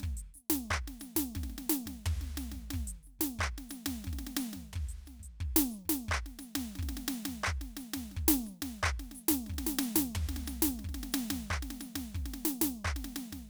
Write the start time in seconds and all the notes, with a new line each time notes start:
0.01 kick, snare
0.18 closed hi-hat
0.35 snare, hi-hat pedal
0.51 kick, snare
0.71 kick, percussion
0.88 snare
1.00 snare, hi-hat pedal
1.16 kick, snare
1.36 kick, snare
1.44 snare
1.50 snare
1.59 snare
1.70 snare, hi-hat pedal
1.86 kick, snare
2.06 kick, floor tom
2.22 snare
2.38 snare, hi-hat pedal
2.52 kick, snare
2.71 kick, snare
2.88 closed hi-hat
3.04 hi-hat pedal
3.08 snare
3.20 kick, snare
3.40 kick, percussion
3.59 snare
3.70 snare, hi-hat pedal
3.87 kick, snare
4.05 kick, snare
4.14 snare
4.19 snare
4.27 snare
4.37 snare, hi-hat pedal
4.54 kick, snare
4.74 kick, floor tom
4.89 closed hi-hat
5.06 snare, hi-hat pedal
5.20 closed hi-hat, kick
5.41 kick, snare
5.57 snare
5.72 snare, hi-hat pedal
5.86 kick, snare
6.09 kick, percussion
6.27 snare
6.40 snare, hi-hat pedal
6.56 kick, snare
6.76 kick, snare
6.83 snare
6.89 snare
6.98 snare
7.09 snare, hi-hat pedal
7.26 kick, snare
7.44 kick, percussion
7.62 snare
7.78 snare, hi-hat pedal
7.94 kick, snare
8.12 snare
8.17 kick
8.29 snare
8.37 snare
8.46 snare, hi-hat pedal
8.63 kick, snare
8.84 kick, percussion
9.00 snare
9.12 snare, hi-hat pedal
9.29 kick, snare
9.47 kick, snare
9.54 snare
9.59 snare
9.67 snare
9.76 snare
9.79 snare, hi-hat pedal
9.96 kick, snare
10.16 kick, floor tom
10.29 snare
10.37 snare
10.47 snare, hi-hat pedal
10.63 kick, snare
10.80 snare
10.85 kick
10.90 snare
10.95 snare
11.04 snare
11.13 snare, hi-hat pedal
11.31 kick, snare
11.51 kick, percussion
11.63 snare
11.71 snare
11.80 snare, hi-hat pedal
11.96 kick, snare
12.15 kick, snare
12.34 snare
12.46 snare, hi-hat pedal
12.62 kick, snare
12.85 kick, percussion
12.97 snare
13.05 snare
13.14 snare, hi-hat pedal
13.17 snare
13.33 kick, snare